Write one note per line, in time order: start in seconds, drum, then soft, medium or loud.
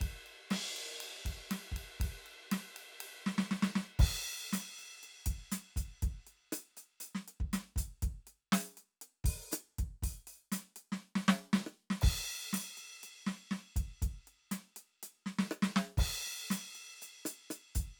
0.01 kick medium
0.01 ride loud
0.26 ride soft
0.51 snare loud
0.51 ride loud
0.77 ride medium
1.01 ride loud
1.26 kick medium
1.26 ride loud
1.51 snare medium
1.51 ride loud
1.72 kick soft
1.77 ride medium
2.00 kick medium
2.00 ride loud
2.05 kick soft
2.26 ride medium
2.52 snare loud
2.52 ride loud
2.77 ride medium
3.01 ride loud
3.27 snare medium
3.38 snare loud
3.51 snare medium
3.63 snare loud
3.76 snare loud
3.99 kick loud
3.99 crash loud
4.27 open hi-hat soft
4.53 open hi-hat loud
4.53 snare medium
4.79 open hi-hat soft
5.03 closed hi-hat medium
5.26 kick medium
5.26 closed hi-hat loud
5.52 closed hi-hat loud
5.52 snare medium
5.76 closed hi-hat medium
5.76 kick medium
6.03 kick medium
6.03 closed hi-hat medium
6.27 open hi-hat medium
6.53 open hi-hat loud
6.53 cross-stick medium
6.77 open hi-hat medium
7.01 open hi-hat medium
7.15 snare medium
7.28 open hi-hat medium
7.40 kick medium
7.53 closed hi-hat medium
7.53 snare medium
7.61 open hi-hat soft
7.76 closed hi-hat medium
7.76 kick medium
8.03 kick medium
8.03 closed hi-hat medium
8.27 open hi-hat medium
8.53 open hi-hat loud
8.53 snare loud
8.61 open hi-hat soft
8.78 open hi-hat medium
9.02 closed hi-hat medium
9.24 kick medium
9.24 open hi-hat loud
9.52 cross-stick medium
9.52 closed hi-hat loud
9.52 hi-hat pedal loud
9.79 kick medium
9.79 closed hi-hat medium
10.03 kick medium
10.03 open hi-hat loud
10.28 open hi-hat medium
10.52 open hi-hat loud
10.52 snare medium
10.76 open hi-hat medium
10.92 snare medium
11.16 snare loud
11.28 snare loud
11.53 snare loud
11.67 cross-stick medium
11.91 snare medium
12.02 kick loud
12.02 crash loud
12.53 snare medium
12.53 open hi-hat loud
12.78 open hi-hat medium
13.04 open hi-hat medium
13.27 snare medium
13.51 snare medium
13.76 kick medium
13.76 closed hi-hat medium
14.02 kick medium
14.02 closed hi-hat medium
14.28 open hi-hat soft
14.52 snare medium
14.52 open hi-hat loud
14.77 open hi-hat medium
15.03 open hi-hat loud
15.26 snare medium
15.39 snare loud
15.51 cross-stick medium
15.63 snare loud
15.76 snare medium
15.98 kick medium
15.98 crash loud
16.26 open hi-hat medium
16.51 open hi-hat loud
16.51 snare medium
16.75 open hi-hat medium
17.02 open hi-hat medium
17.26 closed hi-hat loud
17.26 cross-stick medium
17.51 closed hi-hat medium
17.51 cross-stick medium
17.75 closed hi-hat medium
17.75 kick medium